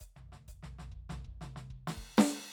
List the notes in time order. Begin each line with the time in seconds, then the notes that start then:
0.00 kick, hi-hat pedal
0.16 snare, floor tom
0.32 snare, floor tom
0.48 kick, hi-hat pedal
0.63 snare, floor tom
0.79 snare, floor tom
0.91 kick
1.09 snare, floor tom
1.24 kick
1.41 snare, high tom
1.56 snare, high tom
1.70 kick
1.87 snare, crash
1.97 kick
2.17 snare, crash